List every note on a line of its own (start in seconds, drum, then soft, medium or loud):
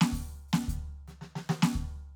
0.01 snare loud
0.14 open hi-hat medium
0.14 kick medium
0.49 hi-hat pedal soft
0.54 snare loud
0.69 open hi-hat medium
0.69 kick medium
1.08 snare soft
1.08 hi-hat pedal soft
1.22 snare soft
1.36 snare medium
1.50 snare loud
1.63 snare loud
1.76 kick medium